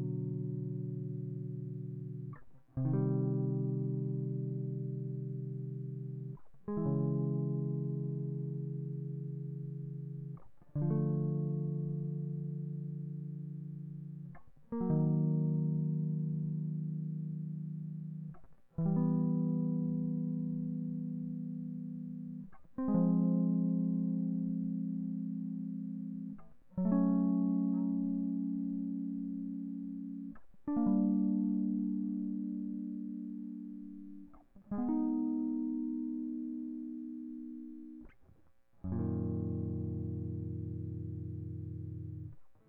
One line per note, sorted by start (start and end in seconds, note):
2.78 6.37 C3
2.86 6.39 D#3
2.94 6.39 G3
6.68 10.39 G#3
6.78 10.40 E3
6.87 10.39 C#3
10.77 14.35 D3
10.83 14.39 F3
10.91 13.62 A3
14.73 18.30 A#3
14.81 18.34 F#3
14.91 18.36 D#3
18.79 22.46 E3
18.86 22.49 G3
18.97 22.48 B3
22.79 26.37 C4
22.89 26.38 G#3
22.95 26.35 F3
26.79 30.35 F#3
26.86 30.40 A3
26.92 30.34 C#4
30.68 34.43 D4
30.77 34.17 A#3
30.87 34.27 G3
34.72 36.33 G#3
34.79 38.07 B3
34.89 38.09 D#4
38.86 42.30 F#2
38.93 42.34 A#2
39.00 42.35 D#3